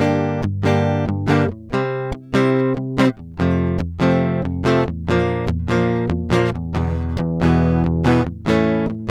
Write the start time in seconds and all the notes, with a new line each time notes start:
0.01 G2 D3 G3 A#3 D4 G4
0.44 G2
0.65 G2 D3 G3 A#3 D4 G4
1.07 G2 D3
1.28 G2 D3 G3 A#3 D4
1.33 G4
1.44 C#3
1.75 C3 G3 C4
2.13 C3
2.35 C3 G3 C4 E4
2.79 C3
3.00 C3 G3 C4
3.19 E2
3.41 F2 C3 F3 A3 C4
3.80 E2
4.01 F2 C3 F3 A3 C4
4.44 F2 C3
4.65 F2 C3 F3 A3
4.69 C4
4.84 A#2
4.90 E2
5.10 E2 A#2 F3 A#3 D4
5.49 E2 A2
5.70 E2 A#2 F3 A#3
5.74 D4
6.11 E2 A#2
6.32 F2 A#2 F3 A#3
6.36 D4
6.50 A#2
6.57 E2
6.76 E2 B2 B3
7.18 E2 B2
7.41 E2 B2 E3
7.46 B3 E4
7.86 E2 B2
8.06 E2 B2 E3
8.10 B3 E4
8.22 A#2
8.29 F2
8.48 E2 A2 E3 A3 C#4
8.52 E4
8.91 A2